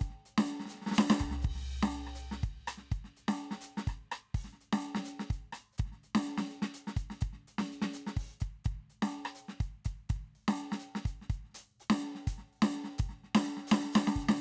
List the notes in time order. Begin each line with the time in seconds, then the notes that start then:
0.01 closed hi-hat, kick
0.10 snare
0.25 closed hi-hat
0.38 snare
0.44 hi-hat pedal
0.49 closed hi-hat
0.60 snare
0.66 snare, hi-hat pedal
0.70 snare
0.74 snare
0.82 snare
0.86 snare
0.91 snare, hi-hat pedal
0.98 snare
1.10 snare
1.18 kick, hi-hat pedal, floor tom
1.31 snare
1.42 kick, hi-hat pedal, crash
1.50 kick
1.55 snare
1.62 snare
1.71 closed hi-hat
1.83 snare
1.95 closed hi-hat
2.07 cross-stick
2.15 closed hi-hat, hi-hat pedal
2.31 snare
2.43 closed hi-hat, kick
2.67 closed hi-hat, cross-stick
2.77 snare
2.92 closed hi-hat, kick
3.04 snare
3.17 closed hi-hat
3.28 snare
3.40 closed hi-hat
3.51 snare
3.61 closed hi-hat, hi-hat pedal
3.77 snare
3.87 closed hi-hat, kick, cross-stick
4.12 closed hi-hat, cross-stick
4.34 open hi-hat, kick
4.44 snare
4.53 snare
4.61 closed hi-hat
4.73 snare
4.85 closed hi-hat
4.95 snare
5.05 closed hi-hat, hi-hat pedal
5.20 snare
5.30 closed hi-hat, kick
5.53 open hi-hat, cross-stick
5.73 hi-hat pedal
5.78 closed hi-hat, kick
5.85 snare
5.92 snare
6.03 closed hi-hat
6.15 snare
6.27 closed hi-hat
6.38 snare
6.44 hi-hat pedal
6.50 closed hi-hat
6.62 snare
6.74 closed hi-hat
6.87 snare
6.96 open hi-hat, kick
7.10 snare, hi-hat pedal
7.21 closed hi-hat, kick
7.33 snare
7.47 closed hi-hat
7.58 snare
7.72 closed hi-hat
7.82 snare
7.93 hi-hat pedal
8.06 snare
8.17 open hi-hat, kick
8.40 closed hi-hat, kick
8.64 closed hi-hat, kick
8.71 kick
8.74 kick
8.90 closed hi-hat
9.02 snare
9.14 closed hi-hat
9.25 cross-stick
9.35 closed hi-hat, hi-hat pedal
9.48 snare
9.60 closed hi-hat, kick
9.85 closed hi-hat, kick
10.09 closed hi-hat, kick, snare
10.16 kick
10.35 open hi-hat
10.48 snare, hi-hat pedal
10.60 closed hi-hat
10.72 snare
10.79 closed hi-hat, hi-hat pedal
10.95 snare
11.05 closed hi-hat, kick
11.21 snare
11.30 closed hi-hat, kick
11.44 snare
11.50 snare
11.53 open hi-hat, snare
11.55 snare
11.80 open hi-hat, hi-hat pedal
11.90 snare
12.03 closed hi-hat
12.15 snare
12.27 closed hi-hat, kick
12.38 snare
12.53 open hi-hat
12.62 snare
12.69 hi-hat pedal
12.75 closed hi-hat
12.84 snare
12.98 closed hi-hat, kick
13.06 kick
13.09 kick, snare
13.24 snare
13.35 snare
13.41 hi-hat pedal
13.47 snare
13.57 snare
13.67 hi-hat pedal
13.71 snare
13.84 snare
13.93 snare, hi-hat pedal
14.07 snare
14.16 kick, hi-hat pedal, high tom
14.29 snare